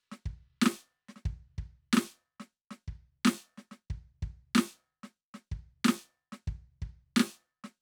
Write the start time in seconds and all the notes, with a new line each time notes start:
0.12 snare
0.26 kick
0.62 snare
0.66 snare
1.09 snare
1.17 snare
1.26 kick
1.59 kick
1.94 snare
1.98 snare
2.41 snare
2.71 snare
2.88 kick
3.26 snare
3.28 snare
3.58 snare
3.72 snare
3.91 kick
4.23 kick
4.56 snare
4.59 snare
5.04 snare
5.35 snare
5.52 kick
5.85 snare
5.89 snare
6.33 snare
6.48 kick
6.83 kick
7.17 snare
7.20 snare
7.65 snare